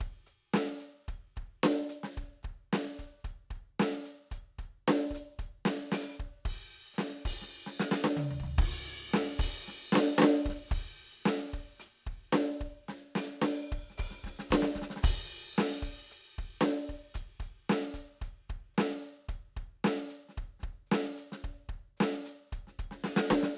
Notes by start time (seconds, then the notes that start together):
0.01 closed hi-hat, kick
0.27 closed hi-hat
0.54 snare
0.80 closed hi-hat
1.08 closed hi-hat, kick
1.36 closed hi-hat, kick
1.63 snare
1.89 closed hi-hat
2.03 snare
2.17 closed hi-hat, kick
2.43 kick, closed hi-hat
2.73 snare
2.99 closed hi-hat, kick
3.24 closed hi-hat, kick
3.50 closed hi-hat, kick
3.80 snare
4.05 closed hi-hat
4.31 closed hi-hat, kick
4.59 closed hi-hat, kick
4.88 snare
5.11 kick
5.15 closed hi-hat
5.39 closed hi-hat, kick
5.65 closed hi-hat, snare
5.92 open hi-hat, snare
6.15 hi-hat pedal
6.20 kick
6.45 kick, crash
6.94 hi-hat pedal
6.98 snare
7.25 kick, crash
7.42 snare
7.66 snare
7.80 snare
7.91 snare
8.03 snare, hi-hat pedal
8.17 high tom
8.31 floor tom
8.40 kick, floor tom
8.58 kick, ride
9.09 hi-hat pedal
9.14 snare
9.39 kick, crash
9.64 snare, hi-hat pedal
9.92 snare
9.95 snare
10.18 snare, hi-hat pedal
10.22 snare
10.46 kick, snare
10.68 kick, hi-hat pedal, crash
10.91 closed hi-hat
11.25 closed hi-hat, snare
11.52 kick, closed hi-hat
11.80 closed hi-hat
12.07 kick
12.33 closed hi-hat, snare
12.61 kick, closed hi-hat
12.88 closed hi-hat, snare
13.15 open hi-hat, snare
13.42 open hi-hat, snare
13.71 open hi-hat, kick
13.90 snare
13.98 open hi-hat, kick
14.11 snare
14.24 kick, snare
14.39 snare
14.50 kick, snare
14.62 snare
14.75 kick, snare
14.82 snare
14.90 snare
14.96 snare
15.03 kick, crash
15.54 hi-hat pedal
15.58 snare, crash
15.82 kick
16.11 closed hi-hat
16.33 closed hi-hat
16.38 kick
16.61 closed hi-hat, snare
16.67 snare
16.89 kick
17.14 closed hi-hat, kick
17.40 closed hi-hat, kick
17.69 snare
17.94 closed hi-hat, kick
18.21 closed hi-hat, kick
18.49 closed hi-hat, kick
18.74 hi-hat pedal
18.78 snare
19.03 closed hi-hat
19.29 closed hi-hat, kick
19.57 closed hi-hat, kick
19.84 snare
20.10 closed hi-hat
20.29 snare
20.37 closed hi-hat, kick
20.59 kick, snare
20.63 closed hi-hat
20.86 hi-hat pedal
20.92 snare
21.18 closed hi-hat
21.32 snare
21.42 kick, closed hi-hat, hi-hat pedal
21.69 kick, closed hi-hat
21.97 snare, hi-hat pedal
22.26 closed hi-hat
22.47 hi-hat pedal
22.52 closed hi-hat, kick
22.67 snare
22.79 open hi-hat, kick
22.91 snare
23.04 snare, hi-hat pedal
23.16 snare
23.30 kick, snare
23.43 snare